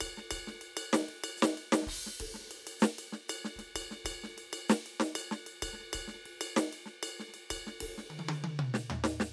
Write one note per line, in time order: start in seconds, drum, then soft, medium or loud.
0.01 kick soft
0.01 ride bell loud
0.18 snare soft
0.31 kick soft
0.31 ride bell loud
0.48 snare soft
0.55 snare soft
0.61 ride bell medium
0.77 ride bell loud
0.93 snare loud
1.01 snare soft
1.09 ride medium
1.24 ride bell loud
1.37 hi-hat pedal medium
1.43 snare loud
1.58 ride bell medium
1.73 snare loud
1.82 snare soft
1.87 kick soft
1.87 crash loud
1.93 kick soft
2.07 snare soft
2.20 kick soft
2.20 ride loud
2.34 snare soft
2.41 snare soft
2.47 snare soft
2.51 ride bell medium
2.67 ride bell medium
2.80 snare loud
2.80 hi-hat pedal medium
2.99 ride bell medium
3.13 snare medium
3.29 hi-hat pedal medium
3.29 ride bell loud
3.45 snare medium
3.56 kick soft
3.56 snare soft
3.56 ride bell medium
3.75 kick soft
3.75 ride bell loud
3.91 snare soft
4.05 kick soft
4.05 ride bell loud
4.24 snare soft
4.30 snare soft
4.36 snare soft
4.36 ride bell medium
4.53 ride bell loud
4.69 snare loud
4.69 hi-hat pedal medium
4.86 ride bell medium
5.00 snare loud
5.16 hi-hat pedal medium
5.16 ride bell loud
5.32 snare medium
5.47 ride bell medium
5.63 kick soft
5.63 ride bell loud
5.73 snare soft
5.80 snare soft
5.93 kick soft
5.93 ride bell loud
6.08 snare soft
6.14 snare soft
6.26 ride medium
6.41 ride bell loud
6.57 snare loud
6.57 hi-hat pedal medium
6.73 ride bell medium
6.86 snare soft
7.03 hi-hat pedal medium
7.03 ride bell loud
7.20 snare soft
7.29 snare soft
7.34 snare soft
7.34 ride bell medium
7.51 kick soft
7.51 ride bell loud
7.67 snare soft
7.81 kick soft
7.81 ride loud
7.98 snare soft
8.10 high tom medium
8.19 high tom medium
8.29 hi-hat pedal soft
8.29 high tom loud
8.44 high tom loud
8.59 mid tom loud
8.74 snare medium
8.90 floor tom loud
9.04 snare loud
9.20 snare medium